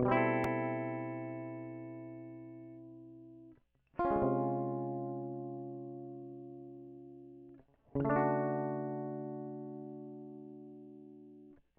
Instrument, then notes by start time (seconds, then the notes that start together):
electric guitar
0.00 B2
0.05 G3 C4
0.11 E4
3.99 F4
4.04 C#4
4.11 G#3
4.23 C3
7.96 C#3
8.04 A3
8.09 D4
8.16 F#4